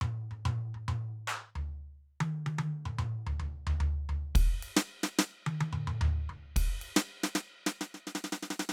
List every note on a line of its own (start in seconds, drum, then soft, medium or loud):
0.00 mid tom loud
0.31 mid tom medium
0.45 mid tom loud
0.74 mid tom soft
0.88 mid tom loud
1.27 percussion medium
1.55 floor tom medium
2.20 high tom loud
2.46 high tom loud
2.58 high tom loud
2.85 mid tom medium
2.99 mid tom loud
3.26 floor tom medium
3.40 floor tom medium
3.67 floor tom loud
3.80 floor tom loud
4.09 floor tom medium
4.35 kick loud
4.35 ride medium
4.62 ride medium
4.77 snare loud
5.03 snare medium
5.19 snare loud
5.46 high tom loud
5.61 high tom loud
5.73 mid tom loud
5.87 mid tom loud
6.01 floor tom loud
6.29 floor tom medium
6.56 kick medium
6.56 ride loud
6.81 ride medium
6.96 snare loud
7.23 snare medium
7.35 snare medium
7.66 snare medium
7.81 snare medium
7.94 snare soft
8.07 snare medium
8.15 snare medium
8.24 snare medium
8.32 snare medium
8.42 snare medium
8.50 snare medium
8.59 snare medium
8.69 snare medium